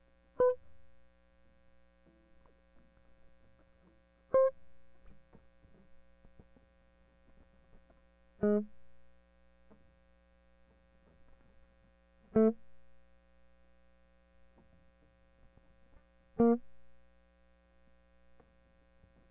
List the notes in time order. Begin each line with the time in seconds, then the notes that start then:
0.41 B4
4.35 C5
8.44 G#3
12.37 A3
16.41 A#3